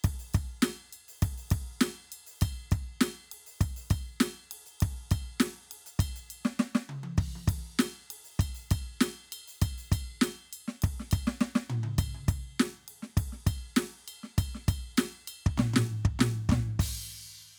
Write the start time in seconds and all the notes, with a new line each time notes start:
0.04 kick, ride, percussion
0.19 percussion
0.34 kick, snare, ride bell
0.62 snare, ride bell
0.93 ride bell
1.08 percussion
1.22 kick, ride
1.38 percussion
1.51 kick, ride
1.81 snare, ride bell
2.12 ride bell
2.27 percussion
2.41 kick, ride bell
2.71 kick, ride bell
3.01 snare, ride bell
3.32 ride
3.47 percussion
3.61 kick, ride bell
3.77 percussion
3.91 kick, ride bell
4.20 snare, ride bell
4.51 ride
4.66 percussion
4.81 kick, ride
5.11 kick, ride bell
5.40 snare, ride
5.71 ride
5.86 percussion
5.99 kick, ride bell
6.16 percussion
6.30 ride bell
6.45 snare
6.59 snare
6.75 snare
6.89 mid tom
7.04 high tom
7.18 kick, crash
7.36 high tom
7.48 kick, ride
7.79 snare, ride bell
8.11 ride
8.24 percussion
8.39 kick, ride bell
8.55 percussion
8.71 kick, ride bell
9.01 snare, ride bell
9.32 ride bell
9.48 percussion
9.62 kick, ride bell
9.78 percussion
9.92 kick, ride bell
10.21 snare, ride bell
10.53 ride bell
10.68 snare
10.82 kick, ride
11.00 snare
11.12 kick, ride bell
11.27 snare
11.41 snare
11.55 snare
11.70 floor tom
11.84 mid tom
11.98 kick, ride bell
12.15 mid tom
12.28 kick, ride bell
12.60 snare
12.88 ride
13.03 snare
13.17 kick, ride
13.33 snare
13.47 kick, ride bell
13.77 snare, ride
14.08 ride bell
14.23 snare
14.38 kick, ride bell
14.55 snare
14.68 kick, ride bell
14.98 snare, ride bell
15.28 ride bell
15.46 kick
15.58 snare, floor tom
15.74 snare, floor tom
16.05 kick
16.19 snare, floor tom
16.49 kick, snare, floor tom
16.80 kick, percussion, crash